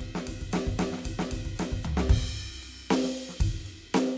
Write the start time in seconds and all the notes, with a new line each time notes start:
0.01 kick, ride
0.16 snare
0.23 hi-hat pedal
0.28 kick, ride
0.42 kick, ride
0.52 snare, hi-hat pedal, ride
0.67 kick
0.79 snare, hi-hat pedal, ride
0.93 snare
0.97 snare
1.02 snare, hi-hat pedal
1.06 kick, ride
1.20 snare
1.27 hi-hat pedal
1.32 kick, ride
1.46 kick, ride
1.56 hi-hat pedal, ride
1.60 snare
1.72 kick
1.83 floor tom, hi-hat pedal
1.98 snare
2.09 kick, hi-hat pedal, crash
2.61 hi-hat pedal, ride
2.91 snare, ride
3.04 snare
3.13 hi-hat pedal, ride
3.30 snare
3.41 kick, ride
3.66 hi-hat pedal, ride
3.95 snare, ride
4.05 snare
4.08 snare
4.10 snare